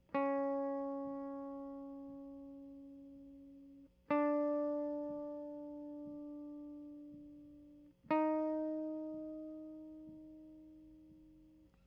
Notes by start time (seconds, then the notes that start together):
0.15 C#4
4.11 D4
8.11 D#4